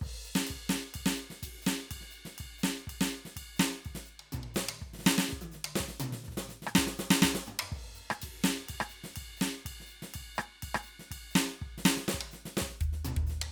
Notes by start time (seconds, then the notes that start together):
0.02 kick, crash
0.07 kick
0.16 kick
0.25 hi-hat pedal
0.36 snare
0.48 kick, ride bell
0.57 kick
0.70 snare, hi-hat pedal
0.77 snare
0.95 kick, ride bell
1.02 kick
1.07 snare
1.17 hi-hat pedal, ride
1.31 snare
1.43 kick, ride
1.63 hi-hat pedal
1.67 snare
1.92 kick, ride bell
1.98 kick, snare
2.11 hi-hat pedal, ride
2.26 snare
2.39 kick, ride bell
2.47 kick
2.59 hi-hat pedal
2.64 snare
2.88 kick, ride bell
2.94 kick
3.02 snare
3.07 hi-hat pedal
3.12 ride
3.26 snare
3.37 kick, ride bell
3.43 kick
3.57 snare, hi-hat pedal
3.85 kick, ride bell
3.93 kick, snare
4.06 hi-hat pedal
4.20 closed hi-hat, high tom
4.33 kick, mid tom
4.41 kick, high tom
4.55 snare, hi-hat pedal
4.69 high tom
4.80 kick, snare
4.85 snare
4.94 snare
4.99 snare
5.03 snare, hi-hat pedal
5.07 snare
5.19 snare
5.29 kick, snare
5.40 kick, high tom
5.52 snare, hi-hat pedal
5.65 high tom
5.76 snare
5.80 kick
5.87 kick, snare
6.00 hi-hat pedal, mid tom
6.13 snare
6.24 snare
6.29 kick, snare
6.38 snare
6.50 snare, hi-hat pedal
6.63 snare
6.67 cross-stick
6.76 kick, snare
6.88 snare
6.98 snare, hi-hat pedal
7.11 snare
7.23 kick, snare
7.35 snare
7.46 floor tom, hi-hat pedal
7.60 floor tom
7.72 kick, floor tom, crash
7.96 hi-hat pedal
8.11 cross-stick
8.22 kick, ride
8.29 kick
8.44 snare, hi-hat pedal
8.69 kick, ride bell
8.76 kick
8.81 cross-stick
8.90 hi-hat pedal, ride
9.04 snare
9.17 kick, ride bell
9.38 hi-hat pedal
9.42 snare
9.66 kick, ride bell
9.72 kick
9.81 snare
9.87 hi-hat pedal
9.91 ride
10.03 snare
10.15 kick, ride bell
10.22 kick
10.36 cross-stick, hi-hat pedal
10.63 kick, ride bell
10.75 cross-stick
10.83 hi-hat pedal
10.88 ride
11.00 snare
11.11 kick, ride bell
11.17 kick
11.31 hi-hat pedal
11.36 snare
11.62 kick
11.69 kick
11.78 snare
11.85 snare, hi-hat pedal
11.98 snare
12.09 snare
12.15 kick
12.21 kick, high tom
12.32 snare, hi-hat pedal
12.46 snare
12.58 snare
12.62 kick
12.69 kick, snare
12.81 hi-hat pedal, mid tom
12.93 snare
13.05 kick, mid tom
13.14 kick, mid tom
13.27 snare, hi-hat pedal
13.42 mid tom